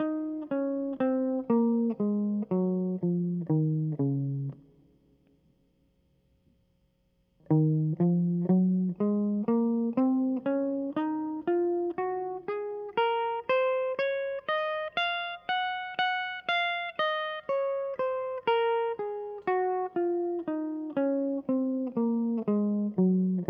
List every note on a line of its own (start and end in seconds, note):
0.00 0.47 D#4
0.52 0.98 C#4
1.01 1.43 C4
1.50 1.95 A#3
2.00 2.47 G#3
2.52 2.99 F#3
3.04 3.46 F3
3.51 3.97 D#3
4.01 4.53 C#3
7.51 7.97 D#3
8.01 8.49 F3
8.50 8.95 F#3
9.01 9.47 G#3
9.49 9.95 A#3
9.98 10.41 C4
10.46 10.93 C#4
10.97 11.44 D#4
11.48 11.93 F4
11.98 12.41 F#4
12.48 12.92 G#4
12.98 13.43 A#4
13.50 13.97 C5
13.99 14.42 C#5
14.49 14.91 D#5
14.97 15.40 F5
15.49 15.97 F#5
15.99 16.42 F#5
16.49 16.93 F5
16.99 17.42 D#5
17.49 17.97 C#5
17.99 18.41 C5
18.48 18.98 A#4
18.99 19.43 G#4
19.48 19.89 F#4
19.96 20.44 F4
20.48 20.95 D#4
20.97 21.43 C#4
21.49 21.92 C4
21.97 22.40 A#3
22.40 22.46 A3
22.48 22.92 G#3
22.99 23.46 F#3